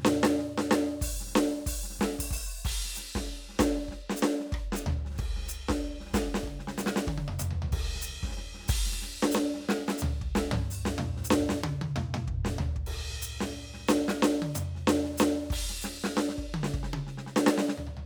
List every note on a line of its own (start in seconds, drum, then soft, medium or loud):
0.01 snare soft
0.05 snare loud
0.24 snare loud
0.39 snare soft
0.58 snare medium
0.72 snare loud
1.02 open hi-hat loud
1.02 kick medium
1.21 snare soft
1.27 snare soft
1.31 snare soft
1.36 snare loud
1.51 snare soft
1.55 snare soft
1.58 snare soft
1.61 snare soft
1.67 open hi-hat loud
1.67 kick medium
1.84 snare soft
1.90 snare soft
1.95 snare soft
2.00 kick soft
2.00 snare loud
2.19 kick medium
2.19 open hi-hat loud
2.31 open hi-hat loud
2.31 kick medium
2.65 kick medium
2.65 crash loud
2.85 snare soft
2.90 snare soft
2.94 snare soft
2.94 hi-hat pedal loud
2.97 snare soft
3.16 kick medium
3.16 snare medium
3.49 snare soft
3.54 snare soft
3.57 snare soft
3.60 kick medium
3.60 snare loud
3.60 hi-hat pedal loud
3.77 snare soft
3.81 snare soft
3.84 snare soft
3.89 kick soft
3.89 snare soft
4.10 snare loud
4.17 hi-hat pedal loud
4.23 snare loud
4.40 snare soft
4.46 snare soft
4.51 kick medium
4.51 cross-stick medium
4.51 snare soft
4.73 snare loud
4.73 hi-hat pedal loud
4.87 floor tom loud
4.92 kick soft
5.06 snare soft
5.11 snare soft
5.15 snare soft
5.15 ride medium
5.19 kick medium
5.19 snare soft
5.37 snare soft
5.41 snare soft
5.45 snare soft
5.45 hi-hat pedal loud
5.45 crash soft
5.69 kick medium
5.69 snare medium
5.85 snare soft
6.01 snare soft
6.06 snare soft
6.10 kick medium
6.10 snare soft
6.15 snare loud
6.15 hi-hat pedal loud
6.35 kick soft
6.35 snare loud
6.44 kick soft
6.48 high tom medium
6.60 snare soft
6.68 snare medium
6.78 snare medium
6.78 hi-hat pedal loud
6.87 snare loud
6.97 snare loud
7.08 kick medium
7.08 high tom loud
7.18 high tom medium
7.28 mid tom loud
7.39 hi-hat pedal loud
7.39 mid tom loud
7.51 floor tom medium
7.63 floor tom medium
7.73 kick medium
7.73 ride loud
7.95 snare soft
8.02 hi-hat pedal loud
8.23 kick medium
8.23 snare soft
8.28 snare soft
8.31 snare soft
8.38 snare soft
8.55 snare soft
8.60 snare soft
8.63 snare soft
8.66 kick medium
8.66 snare soft
8.66 hi-hat pedal loud
8.66 crash loud
8.86 snare soft
8.93 snare soft
8.98 snare soft
9.02 snare soft
9.23 snare loud
9.32 snare loud
9.32 hi-hat pedal loud
9.55 snare soft
9.60 snare soft
9.64 snare soft
9.69 snare loud
9.89 snare loud
9.99 hi-hat pedal loud
10.03 floor tom loud
10.22 kick medium
10.36 snare loud
10.52 floor tom loud
10.71 hi-hat pedal loud
10.86 snare loud
10.99 mid tom loud
11.17 snare soft
11.21 snare soft
11.25 snare soft
11.25 hi-hat pedal loud
11.31 snare loud
11.50 snare loud
11.64 high tom loud
11.82 high tom loud
11.97 mid tom loud
12.15 mid tom loud
12.28 kick medium
12.45 snare loud
12.59 floor tom loud
12.76 kick soft
12.87 ride loud
13.22 hi-hat pedal loud
13.41 snare loud
13.60 snare soft
13.74 snare soft
13.80 snare soft
13.84 snare soft
13.88 snare soft
13.88 snare loud
13.88 hi-hat pedal loud
14.09 snare loud
14.23 snare loud
14.43 high tom loud
14.55 hi-hat pedal loud
14.55 mid tom loud
14.76 snare soft
14.80 snare soft
14.88 snare loud
15.05 snare soft
15.10 snare soft
15.14 snare soft
15.14 hi-hat pedal loud
15.21 snare loud
15.35 snare soft
15.40 snare soft
15.44 snare soft
15.49 kick medium
15.49 snare soft
15.53 crash loud
15.70 snare soft
15.82 snare medium
15.82 hi-hat pedal loud
16.04 snare loud
16.17 snare loud
16.29 snare medium
16.38 kick soft
16.55 high tom loud
16.64 snare loud
16.74 kick medium
16.84 snare medium
16.94 high tom loud
17.07 snare soft
17.18 snare medium
17.27 snare medium
17.37 snare loud
17.47 snare loud
17.58 snare loud
17.69 snare medium
17.78 floor tom medium
17.87 floor tom medium
17.97 floor tom medium